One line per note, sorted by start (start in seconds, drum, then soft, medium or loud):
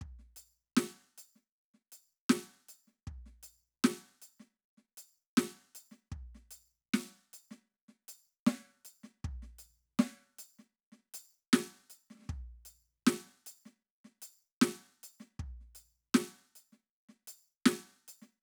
0.01 kick soft
0.19 snare soft
0.37 percussion medium
0.77 snare loud
1.18 percussion medium
1.36 snare soft
1.74 snare soft
1.92 percussion medium
2.30 snare loud
2.69 percussion medium
2.87 snare soft
2.92 snare soft
3.07 kick soft
3.26 snare soft
3.43 percussion medium
3.84 snare loud
4.22 percussion medium
4.40 snare soft
4.78 snare soft
4.98 percussion medium
5.37 snare loud
5.75 percussion medium
5.92 snare soft
6.12 kick soft
6.35 snare soft
6.51 percussion medium
6.94 snare medium
7.00 percussion soft
7.33 percussion medium
7.51 snare soft
7.89 snare soft
8.08 percussion medium
8.47 snare loud
8.85 percussion medium
9.04 snare soft
9.25 kick medium
9.43 snare soft
9.59 percussion soft
9.99 snare loud
10.39 percussion medium
10.59 snare soft
10.92 snare soft
10.97 snare soft
11.14 percussion medium
11.53 snare loud
11.90 percussion soft
12.11 snare soft
12.15 snare soft
12.19 snare soft
12.22 snare soft
12.26 kick medium
12.26 snare soft
12.66 percussion medium
13.07 snare loud
13.27 snare soft
13.47 percussion medium
13.66 snare soft
14.05 snare soft
14.22 percussion medium
14.62 snare loud
15.04 percussion medium
15.20 snare soft
15.40 kick medium
15.61 snare soft
15.75 percussion soft
16.15 snare loud
16.56 percussion soft
16.73 snare soft
17.09 snare soft
17.28 percussion medium
17.66 snare loud
18.08 percussion medium
18.22 snare soft